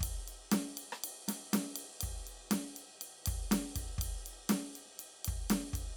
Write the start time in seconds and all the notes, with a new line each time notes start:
0.01 kick, ride
0.28 ride
0.52 snare, ride
0.78 ride
0.93 cross-stick
1.04 ride
1.29 snare, ride
1.54 snare, ride
1.76 ride
2.01 kick, ride
2.27 ride
2.51 snare, ride
2.77 ride
3.02 ride
3.26 kick, ride
3.52 snare, ride
3.76 kick, ride
3.99 kick, ride
4.27 ride
4.50 snare, ride
4.76 ride
5.00 ride
5.25 kick, ride
5.50 snare, ride
5.74 kick, ride